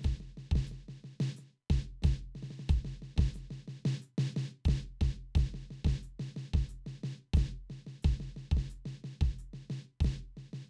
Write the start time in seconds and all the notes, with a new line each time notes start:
0.01 kick, snare, hi-hat pedal
0.20 snare
0.37 snare
0.51 kick, snare
0.56 snare
0.67 hi-hat pedal
0.72 snare
0.89 snare
1.04 snare
1.20 snare
1.37 snare, hi-hat pedal
1.70 kick, snare
2.03 kick, snare, hi-hat pedal
2.05 snare
2.35 snare
2.43 snare
2.51 snare
2.59 snare
2.69 kick, hi-hat pedal
2.85 snare
3.02 snare
3.17 kick, snare
3.19 snare
3.34 snare, hi-hat pedal
3.51 snare
3.68 snare
3.85 snare
4.02 hi-hat pedal
4.18 snare
4.37 snare
4.65 kick, snare, hi-hat pedal
5.01 kick, snare
5.35 kick, snare, hi-hat pedal
5.54 snare
5.71 snare
5.85 kick, snare
5.87 snare
6.03 hi-hat pedal
6.20 snare
6.37 snare
6.54 kick, snare
6.69 hi-hat pedal
6.87 snare
7.04 snare
7.34 kick, snare, hi-hat pedal
7.37 snare
7.70 snare
7.87 snare
8.03 kick, snare, hi-hat pedal
8.20 snare
8.37 snare
8.52 kick, snare
8.57 snare
8.70 hi-hat pedal
8.86 snare
9.04 snare
9.21 kick, snare
9.39 hi-hat pedal
9.54 snare
9.70 snare
10.01 kick, snare, hi-hat pedal
10.05 snare
10.37 snare
10.53 snare